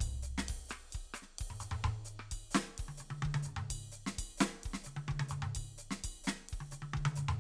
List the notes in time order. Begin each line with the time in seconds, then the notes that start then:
0.01 kick, ride bell
0.23 hi-hat pedal, ride
0.38 snare
0.49 kick, ride
0.56 kick
0.69 cross-stick, hi-hat pedal
0.90 hi-hat pedal, ride bell
0.95 kick
1.14 cross-stick, hi-hat pedal
1.22 snare
1.39 kick, ride
1.51 mid tom
1.60 hi-hat pedal, mid tom
1.72 mid tom
1.84 kick, mid tom
2.05 hi-hat pedal
2.20 cross-stick
2.32 kick, ride bell
2.51 snare, hi-hat pedal
2.78 kick, ride
2.89 high tom
2.98 hi-hat pedal, high tom
3.23 kick, high tom
3.31 kick, high tom
3.43 hi-hat pedal, mid tom
3.57 mid tom
3.70 kick, ride bell
3.76 kick
3.92 hi-hat pedal, ride
4.07 snare
4.19 kick, ride bell
4.38 snare, hi-hat pedal
4.64 kick, ride
4.74 snare
4.84 hi-hat pedal, high tom
5.09 kick, high tom
5.20 high tom
5.29 hi-hat pedal, mid tom
5.43 mid tom
5.55 kick, ride bell
5.78 hi-hat pedal
5.91 snare
6.04 kick, ride bell
6.24 snare, hi-hat pedal
6.49 kick, ride
6.61 high tom
6.72 hi-hat pedal, high tom
6.82 high tom
6.94 kick, high tom
7.03 kick, high tom
7.16 hi-hat pedal, mid tom
7.29 mid tom